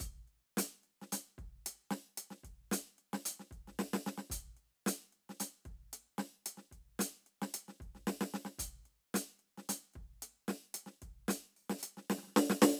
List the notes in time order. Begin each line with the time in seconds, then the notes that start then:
0.05 closed hi-hat, kick
0.27 closed hi-hat
0.57 closed hi-hat, snare
0.83 closed hi-hat
1.01 snare
1.12 closed hi-hat, snare
1.38 kick, closed hi-hat
1.66 closed hi-hat
1.91 snare
2.17 closed hi-hat
2.30 snare
2.43 kick, closed hi-hat
2.71 closed hi-hat, snare
2.98 closed hi-hat
3.13 snare
3.25 closed hi-hat
3.39 snare
3.51 kick, closed hi-hat
3.67 snare
3.79 snare
3.93 snare
4.06 snare
4.18 snare
4.30 closed hi-hat, kick
4.57 closed hi-hat
4.86 closed hi-hat, snare
5.12 closed hi-hat
5.29 snare
5.40 closed hi-hat, snare
5.65 kick, closed hi-hat
5.93 closed hi-hat
6.18 snare
6.46 closed hi-hat
6.57 snare
6.71 kick, closed hi-hat
6.99 closed hi-hat, snare
7.26 closed hi-hat
7.42 snare
7.54 closed hi-hat
7.68 snare
7.80 kick, closed hi-hat
7.95 snare
8.07 snare
8.21 snare
8.34 snare
8.45 snare
8.58 closed hi-hat, kick
8.85 closed hi-hat
9.14 closed hi-hat, snare
9.39 closed hi-hat
9.57 snare
9.69 closed hi-hat, snare
9.94 kick, closed hi-hat
10.22 closed hi-hat
10.48 snare
10.74 closed hi-hat
10.86 snare
11.02 kick, closed hi-hat
11.28 closed hi-hat, snare
11.56 open hi-hat
11.70 snare
11.78 hi-hat pedal
11.83 closed hi-hat
11.97 snare
12.10 snare
12.18 snare
12.23 snare
12.27 snare
12.32 snare
12.36 snare
12.50 snare
12.62 snare